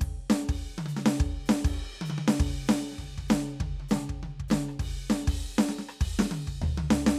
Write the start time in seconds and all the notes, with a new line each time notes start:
0.01 kick, ride
0.30 snare, hi-hat pedal
0.48 kick, crash
0.78 high tom
0.86 hi-hat pedal, high tom
0.97 snare
1.06 snare
1.17 kick, ride
1.46 snare, hi-hat pedal
1.64 kick, ride
2.01 high tom
2.06 hi-hat pedal
2.10 high tom
2.18 high tom
2.28 snare
2.40 kick, crash
2.67 snare, hi-hat pedal, crash
2.92 snare
2.98 kick, high tom
3.18 kick, high tom
3.28 snare, hi-hat pedal, high tom
3.47 cross-stick
3.60 kick, high tom
3.80 high tom
3.89 snare, hi-hat pedal, high tom
4.09 kick
4.23 high tom
4.40 kick
4.48 snare, hi-hat pedal, high tom
4.69 cross-stick
4.79 kick, crash
5.10 snare
5.27 kick, crash
5.58 snare
5.69 snare
5.79 snare
5.89 cross-stick
6.00 kick, crash
6.19 snare
6.31 high tom
6.47 kick
6.62 floor tom
6.78 high tom
6.90 snare
7.07 snare